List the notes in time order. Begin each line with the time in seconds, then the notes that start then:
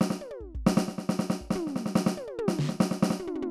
0.00 snare
0.10 snare
0.21 high tom
0.30 high tom
0.40 kick
0.54 kick
0.66 snare
0.77 snare
0.88 snare
1.09 snare
1.30 snare
1.40 kick
1.50 snare
1.55 floor tom
1.67 snare
1.76 snare
1.95 snare
2.06 snare
2.17 high tom
2.27 high tom
2.38 mid tom
2.48 snare
2.59 snare
2.69 snare
2.80 snare
2.91 snare
3.02 snare
3.10 snare
3.19 floor tom
3.27 floor tom
3.35 floor tom
3.42 floor tom